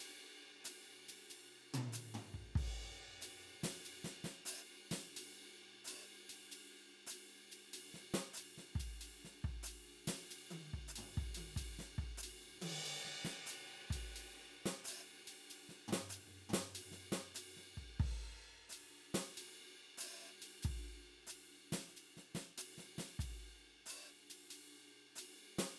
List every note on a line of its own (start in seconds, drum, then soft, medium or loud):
0.01 ride medium
0.65 hi-hat pedal loud
0.65 ride medium
1.09 ride medium
1.31 ride medium
1.74 mid tom medium
1.93 hi-hat pedal loud
1.93 ride medium
2.15 floor tom medium
2.35 kick soft
2.56 kick medium
2.56 ride medium
3.22 hi-hat pedal medium
3.22 ride medium
3.64 snare medium
3.64 ride loud
3.86 ride medium
4.05 snare medium
4.25 snare medium
4.46 hi-hat pedal loud
4.46 ride loud
4.92 snare medium
4.92 ride medium
5.17 ride loud
5.85 hi-hat pedal medium
5.85 ride loud
6.30 ride medium
6.52 ride medium
7.07 hi-hat pedal loud
7.07 ride medium
7.52 ride medium
7.74 ride loud
7.95 snare soft
8.15 snare medium
8.34 hi-hat pedal loud
8.34 ride medium
8.58 snare soft
8.76 kick soft
8.80 ride medium
9.01 ride medium
9.25 snare soft
9.45 kick soft
9.64 hi-hat pedal loud
9.64 ride medium
10.08 snare medium
10.08 ride loud
10.31 ride medium
10.51 high tom medium
10.74 kick soft
10.89 hi-hat pedal medium
10.96 floor tom medium
10.96 ride loud
11.18 kick soft
11.35 high tom soft
11.35 ride medium
11.57 kick soft
11.57 ride medium
11.79 snare soft
11.99 kick soft
12.18 hi-hat pedal loud
12.24 ride loud
12.62 high tom medium
12.62 ride loud
12.86 ride medium
13.05 snare soft
13.25 snare medium
13.47 hi-hat pedal loud
13.47 ride medium
13.91 kick soft
13.91 ride medium
14.16 ride medium
14.66 snare medium
14.85 hi-hat pedal loud
14.85 ride loud
15.28 ride medium
15.51 ride medium
15.70 snare soft
15.89 floor tom medium
15.93 snare medium
16.10 hi-hat pedal loud
16.10 ride medium
16.28 snare soft
16.50 floor tom medium
16.54 snare medium
16.72 hi-hat pedal soft
16.72 ride loud
16.92 snare soft
17.13 snare medium
17.35 hi-hat pedal medium
17.35 ride loud
17.57 snare soft
17.78 kick soft
18.00 kick medium
18.00 crash medium
18.70 hi-hat pedal medium
18.70 ride medium
19.15 snare medium
19.15 ride loud
19.38 ride medium
19.98 hi-hat pedal loud
19.98 ride medium
20.42 ride medium
20.63 kick soft
20.63 ride medium
21.27 hi-hat pedal loud
21.27 ride medium
21.73 snare medium
21.73 ride medium
21.89 hi-hat pedal soft
21.97 ride medium
22.18 snare soft
22.35 snare medium
22.58 hi-hat pedal loud
22.58 ride loud
22.78 snare soft
22.99 snare medium
22.99 ride medium
23.20 kick soft
23.20 ride medium
23.87 hi-hat pedal loud
23.87 ride medium
24.31 ride medium
24.51 ride medium
25.16 hi-hat pedal medium
25.16 ride medium
25.59 snare medium
25.59 ride medium